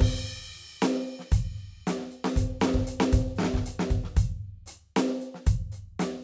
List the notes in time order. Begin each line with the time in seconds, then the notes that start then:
0.01 kick, crash
0.83 closed hi-hat, snare
0.94 snare
0.97 snare
1.09 closed hi-hat
1.20 snare
1.32 closed hi-hat, kick
1.57 hi-hat pedal
1.88 closed hi-hat, snare
1.99 snare
2.02 snare
2.04 snare
2.06 snare
2.12 closed hi-hat
2.25 snare
2.33 kick, snare
2.38 closed hi-hat
2.61 snare, hi-hat pedal
2.67 snare
2.75 kick, snare
2.82 snare
2.86 closed hi-hat, snare
3.01 snare
3.13 closed hi-hat, kick
3.20 snare
3.37 snare, hi-hat pedal
3.44 snare
3.54 kick, snare
3.61 snare
3.67 closed hi-hat, snare
3.80 snare
3.91 closed hi-hat, kick
4.04 snare
4.17 open hi-hat, kick
4.67 closed hi-hat, hi-hat pedal
4.97 closed hi-hat, snare
5.08 snare
5.12 snare
5.15 snare
5.18 closed hi-hat, snare
5.35 snare
5.47 closed hi-hat, kick
5.72 closed hi-hat, hi-hat pedal
6.00 closed hi-hat, snare
6.17 snare